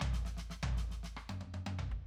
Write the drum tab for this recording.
HH |----------x-----|
SD |roooo-ooor------|
T1 |----------oooo--|
FT |o----o--------o-|
BD |---------------o|